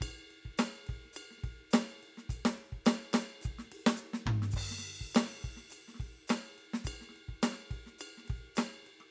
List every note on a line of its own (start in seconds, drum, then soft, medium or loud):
0.01 kick soft
0.01 ride bell loud
0.07 kick soft
0.10 kick soft
0.31 ride soft
0.45 kick soft
0.58 snare loud
0.58 hi-hat pedal medium
0.58 ride bell loud
0.87 kick soft
0.87 ride medium
0.95 kick soft
0.97 kick soft
1.05 snare soft
1.13 hi-hat pedal medium
1.13 ride bell loud
1.31 snare soft
1.38 snare soft
1.44 kick soft
1.44 ride soft
1.50 kick soft
1.71 snare loud
1.71 hi-hat pedal medium
1.71 ride bell loud
2.03 ride soft
2.18 snare soft
2.29 kick soft
2.29 hi-hat pedal medium
2.29 ride bell medium
2.35 kick soft
2.39 kick soft
2.45 snare loud
2.58 ride medium
2.72 kick soft
2.85 snare loud
2.85 hi-hat pedal medium
2.85 ride bell loud
3.13 snare loud
3.13 ride bell loud
3.42 kick soft
3.42 hi-hat pedal medium
3.42 ride soft
3.51 kick soft
3.54 kick soft
3.59 snare soft
3.66 kick soft
3.72 ride medium
3.86 snare loud
3.96 hi-hat pedal medium
3.96 ride medium
4.13 snare medium
4.26 kick soft
4.26 floor tom loud
4.42 snare soft
4.51 kick medium
4.51 hi-hat pedal medium
4.56 crash loud
4.61 kick soft
4.64 kick soft
4.71 snare soft
4.79 snare soft
4.85 ride soft
5.01 kick soft
5.15 snare loud
5.15 hi-hat pedal medium
5.15 ride bell loud
5.26 snare soft
5.43 kick soft
5.43 ride soft
5.56 snare soft
5.70 hi-hat pedal medium
5.70 ride bell medium
5.88 snare soft
5.95 snare soft
6.00 kick soft
6.00 ride soft
6.28 snare loud
6.28 hi-hat pedal medium
6.28 ride bell loud
6.58 ride soft
6.74 snare medium
6.84 kick soft
6.84 hi-hat pedal medium
6.84 ride bell loud
7.01 snare soft
7.09 snare soft
7.16 ride soft
7.29 kick soft
7.42 snare loud
7.42 hi-hat pedal medium
7.42 ride bell loud
7.52 snare soft
7.71 kick soft
7.71 ride medium
7.76 kick soft
7.86 snare soft
7.98 hi-hat pedal medium
7.98 ride bell loud
8.18 snare soft
8.24 snare soft
8.24 ride medium
8.30 kick medium
8.36 kick soft
8.39 kick soft
8.55 snare loud
8.55 hi-hat pedal medium
8.55 ride bell loud
8.69 cross-stick soft
8.87 ride soft
9.00 cross-stick soft